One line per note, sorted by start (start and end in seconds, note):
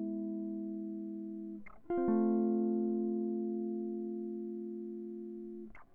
1.90 5.68 F4
1.98 5.67 C4
2.09 5.71 A3